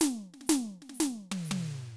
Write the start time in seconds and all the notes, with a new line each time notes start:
0.00 snare, hi-hat pedal
0.34 snare
0.41 snare
0.47 snare, hi-hat pedal
0.82 snare
0.89 snare
0.94 hi-hat pedal
1.00 snare
1.31 high tom
1.45 hi-hat pedal
1.51 high tom